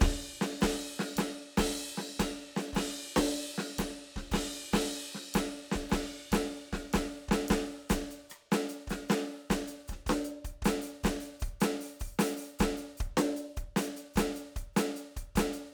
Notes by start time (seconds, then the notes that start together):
0.01 kick, snare, crash
0.42 snare
0.61 kick, snare, crash
1.00 snare
1.17 kick, snare, ride
1.58 kick, snare, crash
1.98 snare
2.20 kick, snare, ride bell
2.57 snare
2.73 kick, snare, crash
3.17 kick, snare, crash
3.58 snare
3.79 kick, snare, ride
4.16 kick, snare
4.32 kick, snare, crash
4.73 kick, snare, crash
5.15 snare
5.35 kick, snare, ride
5.72 kick, snare
5.90 kick, snare, crash
6.32 kick, snare, ride
6.73 kick, snare
6.94 kick, snare, ride
7.29 kick, snare
7.49 kick, snare, ride
7.90 open hi-hat, kick, snare, hi-hat pedal
8.11 closed hi-hat
8.30 closed hi-hat, cross-stick, hi-hat pedal
8.52 open hi-hat, snare, hi-hat pedal
8.69 closed hi-hat
8.88 closed hi-hat, kick, snare, hi-hat pedal
9.09 open hi-hat, snare, hi-hat pedal
9.50 open hi-hat, kick, snare, hi-hat pedal
9.68 closed hi-hat
9.88 closed hi-hat, kick, hi-hat pedal
9.92 snare
10.07 closed hi-hat, kick, snare, hi-hat pedal
10.25 closed hi-hat
10.45 open hi-hat, kick, hi-hat pedal
10.63 open hi-hat, kick, snare
10.68 hi-hat pedal
10.82 open hi-hat
11.04 open hi-hat, kick, snare, hi-hat pedal
11.21 open hi-hat
11.40 open hi-hat, kick
11.61 open hi-hat, snare, hi-hat pedal
11.81 open hi-hat
12.00 open hi-hat, kick
12.19 open hi-hat, snare
12.37 open hi-hat
12.59 closed hi-hat, kick, snare
12.77 open hi-hat
12.97 open hi-hat, kick
13.18 closed hi-hat, snare
13.37 closed hi-hat
13.57 open hi-hat, kick, hi-hat pedal
13.77 open hi-hat, snare
13.85 hi-hat pedal
13.97 closed hi-hat
14.14 closed hi-hat, kick, snare, hi-hat pedal
14.35 closed hi-hat, hi-hat pedal
14.56 open hi-hat, kick, hi-hat pedal
14.74 closed hi-hat, snare, hi-hat pedal
14.92 hi-hat pedal
14.97 closed hi-hat
15.17 open hi-hat, kick, hi-hat pedal
15.36 open hi-hat, kick, snare, hi-hat pedal
15.54 closed hi-hat